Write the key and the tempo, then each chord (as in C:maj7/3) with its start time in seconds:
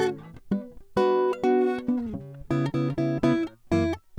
B minor, 131 BPM
0.00 D:maj7(6)
0.26 G:maj7
2.09 C#:7(#9,*5)/3
3.92 F#:7(*5)